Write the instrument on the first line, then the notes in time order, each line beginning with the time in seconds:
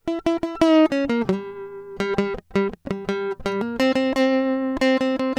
acoustic guitar
0.09 E4
0.28 E4
0.45 E4
0.63 D#4 E4
0.94 C#4
1.11 A#3
1.31 G3
2.02 G3
2.20 G3
2.58 G3
2.92 G3
3.11 G3
3.48 G3
3.63 A#3
3.81 C4
3.98 C4
4.18 C4
4.83 C4
5.03 C4
5.22 C4